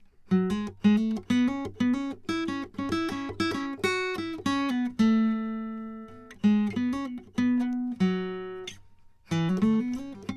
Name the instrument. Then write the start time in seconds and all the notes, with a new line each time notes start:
acoustic guitar
0.32 F#3
0.51 G#3
0.85 A3
1.30 B3
1.48 C#4
1.81 B3
1.94 C#4
2.29 E4
2.49 C#4
2.79 C#4
2.92 E4
3.13 C#4
3.40 E4
3.55 C#4
3.84 F#4
4.15 E4
4.46 C#4
4.70 B3
5.00 A3
6.44 G#3
6.77 B3
6.93 C#4
7.05 B3
7.38 B3
8.01 F#3
9.32 E3
9.50 F#3
9.62 D3 A3
9.81 B3
9.97 C#4